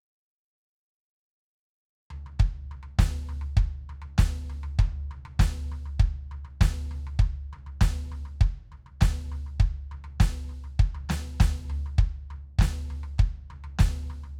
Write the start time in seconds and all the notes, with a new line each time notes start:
2.10 floor tom
2.26 floor tom
2.39 kick, floor tom
2.71 floor tom
2.83 floor tom
2.99 kick, snare, floor tom
3.29 floor tom
3.41 floor tom
3.57 kick, floor tom
3.89 floor tom
4.02 floor tom
4.18 kick, snare, floor tom
4.50 floor tom
4.63 floor tom
4.79 kick, floor tom
5.11 floor tom
5.25 floor tom
5.39 kick, snare, floor tom
5.72 floor tom
5.86 floor tom
6.00 kick, floor tom
6.31 floor tom
6.45 floor tom
6.61 kick, snare, floor tom
6.91 floor tom
7.07 floor tom
7.19 kick, floor tom
7.53 floor tom
7.67 floor tom
7.81 kick, snare, floor tom
8.12 floor tom
8.25 floor tom
8.41 kick, floor tom
8.72 floor tom
8.86 floor tom
9.01 kick, snare, floor tom
9.32 floor tom
9.46 floor tom
9.60 kick, floor tom
9.91 floor tom
10.04 floor tom
10.20 kick, snare, floor tom
10.49 floor tom
10.64 floor tom
10.79 kick, floor tom
10.95 floor tom
11.09 snare, floor tom
11.40 kick, snare, floor tom
11.70 floor tom
11.86 floor tom
11.98 kick, floor tom
12.30 floor tom
12.59 kick, snare, floor tom
12.90 floor tom
13.03 floor tom
13.19 kick, floor tom
13.50 floor tom
13.64 floor tom
13.79 kick, snare, floor tom
14.10 floor tom
14.24 floor tom